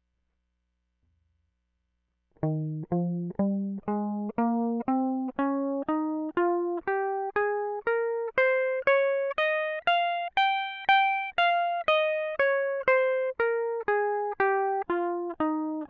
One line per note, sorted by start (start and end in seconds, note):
2.44 2.88 D#3
2.93 3.34 F3
3.40 3.82 G3
3.89 4.34 G#3
4.39 4.85 A#3
4.89 5.33 C4
5.39 5.87 C#4
5.89 6.33 D#4
6.37 6.82 F4
6.88 7.33 G4
7.36 7.83 G#4
7.87 8.32 A#4
8.38 8.84 C5
8.88 9.33 C#5
9.39 9.83 D#5
9.88 10.31 F5
10.37 10.87 G5
10.89 11.32 G5
11.38 11.85 F5
11.88 12.38 D#5
12.40 12.85 C#5
12.88 13.34 C5
13.40 13.85 A#4
13.88 14.36 G#4
14.40 14.85 G4
14.90 15.36 F4
15.41 15.87 D#4